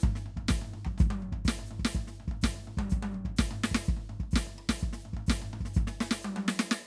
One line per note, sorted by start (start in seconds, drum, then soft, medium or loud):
0.01 kick loud
0.01 floor tom loud
0.01 hi-hat pedal medium
0.15 snare medium
0.20 hi-hat pedal soft
0.26 floor tom medium
0.37 kick medium
0.37 floor tom medium
0.48 kick medium
0.48 snare loud
0.48 hi-hat pedal medium
0.61 floor tom medium
0.71 floor tom medium
0.71 hi-hat pedal soft
0.85 kick medium
0.85 high tom medium
0.98 kick loud
0.98 floor tom medium
0.98 hi-hat pedal medium
1.10 high tom loud
1.20 floor tom medium
1.20 hi-hat pedal soft
1.32 kick medium
1.32 floor tom medium
1.45 kick medium
1.45 snare loud
1.45 hi-hat pedal medium
1.59 floor tom medium
1.66 hi-hat pedal medium
1.71 floor tom medium
1.79 kick medium
1.85 snare loud
1.91 kick medium
1.91 hi-hat pedal medium
1.97 floor tom medium
2.07 snare soft
2.13 hi-hat pedal soft
2.20 floor tom medium
2.28 kick medium
2.28 floor tom medium
2.41 kick medium
2.41 snare loud
2.41 hi-hat pedal medium
2.56 floor tom soft
2.63 hi-hat pedal soft
2.67 floor tom medium
2.77 kick medium
2.77 high tom loud
2.90 kick medium
2.90 floor tom medium
2.90 hi-hat pedal medium
3.02 high tom loud
3.11 floor tom medium
3.11 hi-hat pedal soft
3.25 kick medium
3.25 floor tom medium
3.36 kick medium
3.36 snare loud
3.36 hi-hat pedal medium
3.51 floor tom medium
3.58 hi-hat pedal soft
3.64 snare loud
3.71 kick medium
3.71 snare loud
3.84 hi-hat pedal medium
3.88 kick medium
3.97 floor tom medium
4.05 floor tom medium
4.05 hi-hat pedal soft
4.20 kick medium
4.20 floor tom soft
4.31 kick medium
4.31 hi-hat pedal medium
4.36 snare loud
4.46 floor tom soft
4.58 floor tom medium
4.69 kick medium
4.69 snare loud
4.78 floor tom medium
4.78 hi-hat pedal medium
4.83 kick medium
4.93 snare medium
5.00 hi-hat pedal soft
5.05 floor tom medium
5.13 kick medium
5.13 floor tom medium
5.26 kick medium
5.26 snare loud
5.26 hi-hat pedal medium
5.42 floor tom medium
5.53 floor tom medium
5.61 kick medium
5.65 snare medium
5.74 kick medium
5.74 floor tom medium
5.74 hi-hat pedal medium
5.87 snare medium
5.96 hi-hat pedal soft
6.00 snare loud
6.11 snare loud
6.21 hi-hat pedal medium
6.21 high tom loud
6.36 high tom loud
6.48 snare loud
6.59 snare loud
6.71 snare loud